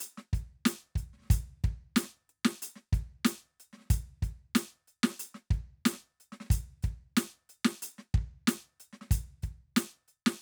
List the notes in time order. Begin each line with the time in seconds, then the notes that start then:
0.01 closed hi-hat
0.18 snare
0.33 closed hi-hat, kick
0.66 closed hi-hat, snare
0.96 closed hi-hat, kick
1.14 snare
1.18 snare
1.22 snare
1.24 snare
1.26 snare
1.31 closed hi-hat, kick
1.64 kick, closed hi-hat
1.97 closed hi-hat, snare
2.04 snare
2.30 closed hi-hat
2.45 snare
2.63 closed hi-hat
2.76 snare
2.93 closed hi-hat, kick
3.25 closed hi-hat, snare
3.60 closed hi-hat
3.74 snare
3.78 snare
3.81 snare
3.86 snare
3.91 closed hi-hat, kick
4.23 closed hi-hat, kick
4.56 closed hi-hat, snare
4.88 closed hi-hat
5.04 snare
5.11 snare
5.20 closed hi-hat
5.35 snare
5.51 closed hi-hat, kick
5.86 closed hi-hat, snare
5.93 snare
6.21 closed hi-hat
6.33 snare
6.41 snare
6.45 snare
6.51 closed hi-hat, kick
6.83 closed hi-hat, kick
7.17 closed hi-hat, snare
7.50 closed hi-hat
7.65 snare
7.83 closed hi-hat
7.99 snare
8.15 kick, closed hi-hat
8.48 closed hi-hat, snare
8.80 closed hi-hat
8.93 snare
9.02 snare
9.05 snare
9.08 closed hi-hat, kick, snare
9.43 closed hi-hat, kick
9.77 closed hi-hat, snare
10.08 closed hi-hat
10.27 snare